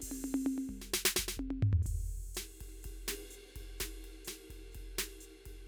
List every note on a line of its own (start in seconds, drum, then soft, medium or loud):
0.01 kick soft
0.01 hi-hat pedal loud
0.01 high tom soft
0.12 high tom medium
0.25 high tom loud
0.35 high tom loud
0.47 high tom loud
0.58 high tom medium
0.69 kick soft
0.69 mid tom medium
0.82 snare soft
0.94 kick soft
0.94 snare loud
1.06 snare loud
1.17 kick soft
1.17 snare loud
1.24 kick soft
1.29 snare medium
1.38 kick soft
1.38 high tom loud
1.43 kick soft
1.51 high tom medium
1.63 floor tom loud
1.73 floor tom loud
1.83 kick soft
1.83 floor tom soft
1.83 hi-hat pedal soft
1.87 crash medium
1.95 kick soft
2.35 snare medium
2.35 hi-hat pedal medium
2.35 ride medium
2.61 kick soft
2.61 ride soft
2.69 snare soft
2.83 kick soft
2.83 hi-hat pedal soft
2.83 ride medium
2.91 kick soft
3.08 snare medium
3.08 ride loud
3.31 hi-hat pedal medium
3.43 snare soft
3.56 kick soft
3.56 ride medium
3.62 kick soft
3.79 kick soft
3.79 snare medium
3.79 hi-hat pedal soft
3.79 ride medium
3.86 kick soft
4.05 ride soft
4.25 snare medium
4.25 hi-hat pedal medium
4.25 ride medium
4.50 kick soft
4.50 ride soft
4.64 snare soft
4.73 kick soft
4.73 hi-hat pedal soft
4.73 ride soft
4.81 kick soft
4.99 snare medium
4.99 ride medium
5.09 snare soft
5.21 hi-hat pedal medium
5.21 ride soft
5.28 snare soft
5.46 kick soft
5.46 ride soft